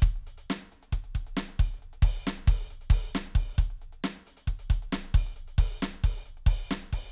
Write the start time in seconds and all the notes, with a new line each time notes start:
0.01 kick, hi-hat pedal
0.05 closed hi-hat
0.17 closed hi-hat
0.27 closed hi-hat
0.38 closed hi-hat
0.51 snare
0.62 closed hi-hat
0.73 closed hi-hat
0.84 closed hi-hat
0.93 kick, closed hi-hat
1.05 closed hi-hat
1.16 closed hi-hat, kick
1.28 closed hi-hat
1.38 snare
1.49 closed hi-hat
1.60 open hi-hat, kick
1.75 hi-hat pedal, open hi-hat
1.83 closed hi-hat
1.94 closed hi-hat
2.03 open hi-hat, kick
2.18 open hi-hat
2.24 snare, hi-hat pedal
2.38 closed hi-hat
2.48 open hi-hat, kick
2.62 open hi-hat
2.67 hi-hat pedal
2.71 closed hi-hat
2.82 closed hi-hat
2.91 open hi-hat, kick
3.04 open hi-hat
3.10 hi-hat pedal
3.16 snare
3.27 closed hi-hat
3.36 open hi-hat, kick
3.50 open hi-hat
3.56 closed hi-hat, kick, hi-hat pedal
3.71 closed hi-hat
3.82 closed hi-hat
3.93 closed hi-hat
4.05 snare
4.16 closed hi-hat
4.28 closed hi-hat
4.48 kick, closed hi-hat
4.60 closed hi-hat
4.71 closed hi-hat, kick
4.83 closed hi-hat
4.93 snare
5.05 closed hi-hat
5.15 open hi-hat, kick
5.27 open hi-hat
5.34 closed hi-hat, hi-hat pedal
5.48 closed hi-hat
5.59 open hi-hat, kick
5.71 open hi-hat
5.79 snare, hi-hat pedal
5.94 closed hi-hat
6.04 open hi-hat, kick
6.18 open hi-hat
6.22 hi-hat pedal
6.26 closed hi-hat
6.38 closed hi-hat
6.47 open hi-hat, kick
6.60 open hi-hat
6.68 snare, hi-hat pedal
6.83 closed hi-hat
6.94 open hi-hat, kick
7.06 open hi-hat